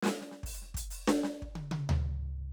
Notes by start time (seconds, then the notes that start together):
0.02 snare
0.06 snare
0.21 snare
0.31 snare
0.43 open hi-hat, kick
0.54 hi-hat pedal
0.62 snare
0.74 closed hi-hat, kick
0.90 hi-hat pedal
1.07 snare
1.23 snare
1.42 kick
1.55 closed hi-hat, high tom
1.71 high tom
1.89 floor tom